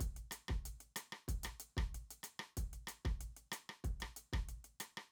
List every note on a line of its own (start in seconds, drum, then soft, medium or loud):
0.01 kick medium
0.01 closed hi-hat medium
0.17 closed hi-hat soft
0.32 cross-stick medium
0.32 closed hi-hat medium
0.49 kick medium
0.49 cross-stick medium
0.66 closed hi-hat medium
0.81 closed hi-hat soft
0.97 cross-stick medium
0.97 closed hi-hat medium
1.13 cross-stick medium
1.29 kick medium
1.29 closed hi-hat medium
1.44 cross-stick medium
1.44 closed hi-hat medium
1.61 closed hi-hat medium
1.78 kick medium
1.78 cross-stick medium
1.95 closed hi-hat soft
2.11 closed hi-hat medium
2.24 cross-stick soft
2.24 closed hi-hat medium
2.40 cross-stick medium
2.58 kick medium
2.58 closed hi-hat medium
2.74 closed hi-hat soft
2.88 cross-stick medium
2.88 closed hi-hat medium
3.06 kick medium
3.06 cross-stick medium
3.22 closed hi-hat soft
3.38 closed hi-hat soft
3.53 cross-stick medium
3.53 closed hi-hat medium
3.70 cross-stick medium
3.85 kick medium
3.85 closed hi-hat soft
4.01 cross-stick medium
4.01 closed hi-hat soft
4.17 closed hi-hat medium
4.34 kick medium
4.34 cross-stick medium
4.50 closed hi-hat soft
4.65 closed hi-hat soft
4.81 cross-stick medium
4.81 closed hi-hat medium
4.98 cross-stick medium